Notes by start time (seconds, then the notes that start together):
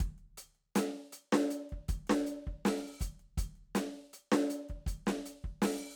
0.00 kick, closed hi-hat
0.18 closed hi-hat
0.38 closed hi-hat
0.55 closed hi-hat
0.75 closed hi-hat, snare
0.94 closed hi-hat
1.12 closed hi-hat
1.32 snare, closed hi-hat
1.50 closed hi-hat
1.69 kick, closed hi-hat
1.88 closed hi-hat, kick
2.07 snare, closed hi-hat
2.26 closed hi-hat
2.44 kick, closed hi-hat
2.65 open hi-hat, snare
3.00 closed hi-hat, kick, hi-hat pedal
3.19 closed hi-hat
3.38 closed hi-hat, kick
3.55 closed hi-hat
3.75 closed hi-hat, snare
3.94 closed hi-hat
4.13 closed hi-hat
4.32 snare, closed hi-hat
4.50 closed hi-hat
4.69 kick, closed hi-hat
4.86 closed hi-hat, kick
5.06 snare, closed hi-hat
5.26 closed hi-hat
5.43 kick, closed hi-hat
5.62 open hi-hat, snare